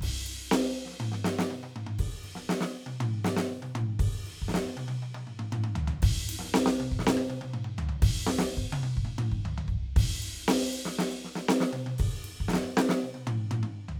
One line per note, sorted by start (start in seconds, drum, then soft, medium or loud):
0.01 kick medium
0.01 ride loud
0.27 ride medium
0.52 snare loud
0.52 ride medium
0.73 ride soft
0.86 snare soft
0.89 snare soft
0.92 snare soft
1.00 mid tom loud
1.12 snare medium
1.25 snare loud
1.39 snare loud
1.51 high tom medium
1.63 high tom medium
1.76 mid tom loud
1.87 mid tom loud
1.99 kick medium
1.99 crash medium
2.24 ride medium
2.36 snare medium
2.49 snare loud
2.61 snare loud
2.86 high tom medium
3.01 mid tom loud
3.25 snare loud
3.37 snare loud
3.51 high tom soft
3.62 high tom medium
3.75 mid tom loud
3.99 kick loud
3.99 crash medium
4.26 ride medium
4.42 kick medium
4.49 snare loud
4.54 snare loud
4.69 cross-stick soft
4.77 high tom loud
4.88 high tom medium
5.03 high tom soft
5.15 high tom medium
5.27 mid tom medium
5.39 mid tom loud
5.53 mid tom loud
5.64 mid tom loud
5.76 floor tom loud
5.88 floor tom loud
6.02 kick loud
6.02 ride loud
6.29 ride loud
6.39 snare medium
6.45 snare soft
6.54 snare loud
6.66 snare loud
6.80 high tom loud
6.92 kick medium
6.99 snare medium
7.07 snare loud
7.17 cross-stick medium
7.30 high tom medium
7.41 high tom loud
7.54 mid tom loud
7.65 mid tom soft
7.78 floor tom loud
7.89 floor tom medium
8.02 kick loud
8.02 ride loud
8.27 snare loud
8.39 snare loud
8.57 kick medium
8.73 high tom loud
8.83 high tom loud
8.97 kick medium
9.05 mid tom medium
9.19 mid tom loud
9.32 kick medium
9.45 floor tom loud
9.58 floor tom loud
9.68 kick medium
9.93 kick loud
9.93 cross-stick soft
9.93 ride soft
9.93 ride loud
10.22 ride medium
10.48 snare loud
10.48 ride loud
10.73 ride medium
10.86 snare medium
10.99 snare loud
11.10 open hi-hat medium
11.25 snare medium
11.36 snare medium
11.49 snare loud
11.61 snare loud
11.73 high tom loud
11.86 high tom medium
11.99 kick loud
11.99 crash medium
12.24 ride medium
12.40 kick medium
12.49 snare loud
12.54 snare loud
12.64 cross-stick medium
12.69 snare soft
12.77 snare loud
12.89 snare loud
13.03 high tom medium
13.14 high tom medium
13.27 mid tom loud
13.51 mid tom loud
13.63 mid tom loud
13.89 floor tom loud